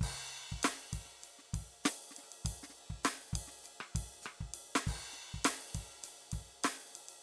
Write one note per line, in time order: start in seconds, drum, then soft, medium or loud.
0.01 kick medium
0.01 hi-hat pedal medium
0.01 crash medium
0.12 kick soft
0.14 kick soft
0.52 kick soft
0.63 snare loud
0.63 hi-hat pedal medium
0.63 ride loud
0.93 kick soft
0.93 ride medium
0.98 kick soft
1.05 snare soft
1.21 hi-hat pedal soft
1.21 ride medium
1.39 snare soft
1.45 cross-stick soft
1.51 kick soft
1.51 snare soft
1.51 ride medium
1.60 kick soft
1.84 snare loud
1.84 hi-hat pedal medium
1.84 ride loud
2.11 snare soft
2.11 hi-hat pedal soft
2.16 snare soft
2.16 ride medium
2.23 cross-stick soft
2.32 ride medium
2.44 kick soft
2.44 hi-hat pedal medium
2.44 ride loud
2.50 kick soft
2.55 kick soft
2.63 snare soft
2.69 snare soft
2.77 ride soft
2.90 kick soft
3.03 snare loud
3.03 hi-hat pedal medium
3.03 ride loud
3.33 kick soft
3.33 ride loud
3.44 kick soft
3.44 snare soft
3.63 hi-hat pedal medium
3.63 ride soft
3.80 cross-stick medium
3.95 kick medium
3.95 ride medium
4.02 kick soft
4.22 cross-stick medium
4.22 hi-hat pedal medium
4.41 kick soft
4.46 kick soft
4.54 ride medium
4.75 snare loud
4.86 kick medium
4.86 hi-hat pedal medium
4.86 crash medium
4.94 kick soft
4.98 kick soft
5.13 snare soft
5.34 kick soft
5.45 snare loud
5.45 hi-hat pedal medium
5.45 ride loud
5.75 kick soft
5.75 ride medium
5.80 kick soft
5.90 snare soft
5.93 snare soft
6.03 hi-hat pedal medium
6.03 ride medium
6.32 kick soft
6.32 ride medium
6.39 kick soft
6.63 snare loud
6.63 hi-hat pedal medium
6.63 ride loud
6.91 snare soft
6.95 ride medium
7.00 snare soft
7.08 ride medium